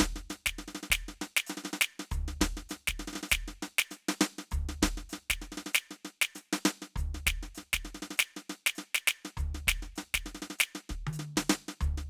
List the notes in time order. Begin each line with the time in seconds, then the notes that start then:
0.01 kick, snare
0.11 kick
0.17 snare
0.31 snare, hi-hat pedal
0.47 kick, snare
0.59 snare
0.69 snare
0.76 snare
0.84 snare
0.91 kick, snare, hi-hat pedal
1.09 snare
1.22 snare
1.38 snare
1.47 snare, hi-hat pedal
1.58 snare
1.65 snare
1.74 snare
1.82 snare
2.00 snare
2.12 kick, floor tom, hi-hat pedal
2.22 kick
2.29 snare
2.42 kick, snare
2.48 kick
2.58 snare
2.70 snare, hi-hat pedal
2.88 kick, snare
3.00 snare
3.08 snare
3.14 snare
3.16 snare
3.24 snare
3.30 kick, snare, hi-hat pedal
3.49 snare
3.63 snare
3.79 snare
3.92 snare, hi-hat pedal
4.09 snare
4.22 snare
4.39 snare
4.52 kick, floor tom, hi-hat pedal
4.59 kick
4.62 kick
4.70 snare
4.83 kick, snare
4.98 snare
5.10 snare, hi-hat pedal
5.31 kick, snare
5.43 snare
5.53 snare
5.58 snare
5.67 snare
5.74 snare, hi-hat pedal
5.92 snare
6.06 snare
6.22 snare
6.36 snare, hi-hat pedal
6.54 snare
6.66 snare
6.83 snare
6.97 kick, floor tom, hi-hat pedal
7.06 kick
7.15 snare
7.28 kick, snare
7.34 kick
7.44 snare
7.56 snare, hi-hat pedal
7.74 kick, snare
7.86 snare
7.95 snare
8.03 snare
8.11 snare
8.18 snare, hi-hat pedal
8.37 snare
8.51 snare
8.67 snare
8.76 snare, hi-hat pedal
8.96 snare
9.08 snare
9.26 snare
9.38 kick, floor tom, hi-hat pedal
9.55 snare
9.68 kick, snare
9.78 kick
9.83 snare
9.97 snare, hi-hat pedal
10.15 kick, snare
10.27 snare
10.36 snare
10.43 snare
10.51 snare
10.60 snare, hi-hat pedal
10.76 snare
10.90 kick, snare
11.08 open hi-hat, high tom
11.14 hi-hat pedal
11.20 snare
11.37 kick, snare
11.51 snare
11.69 snare
11.82 kick, floor tom, hi-hat pedal
11.88 kick
11.98 snare